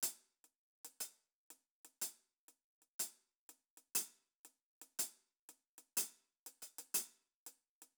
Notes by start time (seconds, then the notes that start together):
0.03 closed hi-hat
0.44 closed hi-hat
0.85 closed hi-hat
1.00 closed hi-hat
1.50 closed hi-hat
1.85 closed hi-hat
2.01 closed hi-hat
2.48 closed hi-hat
2.82 closed hi-hat
2.99 closed hi-hat
3.49 closed hi-hat
3.77 closed hi-hat
3.95 closed hi-hat
4.45 closed hi-hat
4.81 closed hi-hat
4.99 closed hi-hat
5.49 closed hi-hat
5.78 closed hi-hat
5.97 closed hi-hat
6.46 closed hi-hat
6.62 closed hi-hat
6.78 closed hi-hat
6.94 closed hi-hat
7.46 closed hi-hat
7.82 closed hi-hat